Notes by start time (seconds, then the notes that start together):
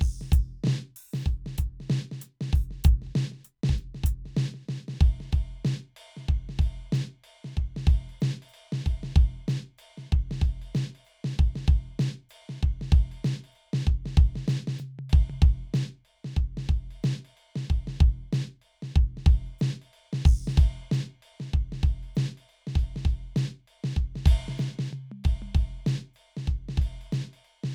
0.01 kick, crash
0.21 snare
0.32 closed hi-hat, kick
0.64 snare
0.67 snare
0.96 open hi-hat
1.14 snare
1.26 kick
1.46 snare
1.58 closed hi-hat, kick
1.80 snare
1.90 snare
2.12 snare
2.22 closed hi-hat
2.41 snare
2.49 snare
2.53 kick, open hi-hat
2.64 hi-hat pedal
2.71 snare
2.84 closed hi-hat, kick
3.02 snare
3.07 kick
3.15 snare
3.32 snare
3.45 closed hi-hat
3.64 snare
3.69 kick
3.75 closed hi-hat, hi-hat pedal
3.95 snare
4.04 closed hi-hat, kick
4.26 kick, snare
4.37 snare
4.54 snare
4.69 snare
4.88 snare
4.94 snare
5.01 kick, ride
5.20 snare
5.32 kick, ride
5.65 snare, hi-hat pedal
5.96 ride
6.17 snare
6.29 kick
6.49 snare
6.59 kick, ride
6.93 snare, hi-hat pedal
7.24 ride
7.44 snare
7.57 kick
7.76 snare
7.87 kick, ride
8.09 ride bell
8.20 snare, hi-hat pedal
8.42 ride
8.49 hi-hat pedal
8.54 ride
8.72 snare
8.86 kick, ride
9.03 snare
9.16 kick, ride bell
9.48 snare, hi-hat pedal
9.78 hi-hat pedal, ride
9.98 snare
10.12 kick
10.31 snare
10.42 kick, ride bell
10.62 ride
10.75 snare, hi-hat pedal
10.95 ride bell
11.04 hi-hat pedal, ride
11.24 snare
11.38 kick, ride
11.56 snare
11.67 kick, ride bell
11.99 snare, hi-hat pedal
12.29 hi-hat pedal, ride
12.49 snare
12.63 kick
12.81 snare
12.92 kick, ride bell
13.12 ride
13.24 snare, hi-hat pedal
13.44 ride bell
13.52 hi-hat pedal, ride
13.73 snare
13.87 kick
14.06 snare
14.17 kick, ride bell
14.36 snare
14.48 snare, hi-hat pedal
14.68 snare
14.78 floor tom, hi-hat pedal
14.99 floor tom
15.10 kick, ride
15.30 floor tom
15.42 kick, ride bell
15.74 snare, hi-hat pedal
16.05 ride
16.25 snare
16.37 kick
16.57 snare
16.69 kick, ride bell
16.91 ride bell
17.03 snare, hi-hat pedal
17.25 ride bell
17.37 ride
17.56 snare
17.70 kick, ride
17.87 snare
17.99 kick, ride bell
18.33 snare, hi-hat pedal
18.62 ride bell
18.83 snare
18.96 kick
19.17 snare
19.26 kick, ride
19.46 kick, ride
19.59 snare, hi-hat pedal
19.82 ride
19.93 ride bell
20.13 snare
20.25 kick, crash
20.48 snare
20.58 kick, ride bell
20.92 snare, hi-hat pedal
21.22 ride bell
21.40 snare
21.54 kick
21.72 snare
21.83 kick, ride bell
22.03 ride bell
22.15 snare, hi-hat pedal
22.37 ride bell
22.49 ride bell
22.67 snare
22.76 kick, ride
22.96 snare
23.05 kick, ride bell
23.36 snare, hi-hat pedal
23.68 ride bell
23.84 snare
23.96 kick
24.16 snare
24.26 kick, ride
24.48 snare
24.58 snare, hi-hat pedal
24.79 snare
24.85 hi-hat pedal
24.93 floor tom
25.12 mid tom
25.24 kick, ride
25.42 mid tom
25.55 kick, ride
25.86 snare, hi-hat pedal
26.14 hi-hat pedal, ride bell
26.37 snare
26.48 kick
26.69 snare
26.78 kick
26.82 ride
27.01 ride
27.12 snare, hi-hat pedal
27.33 ride bell
27.45 ride bell
27.64 snare